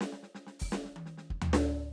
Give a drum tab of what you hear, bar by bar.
HH |-----op-x-------|
SD |oggog-og-gg--o--|
T1 |--------o-------|
FT |------------o---|
BD |-----o-----o----|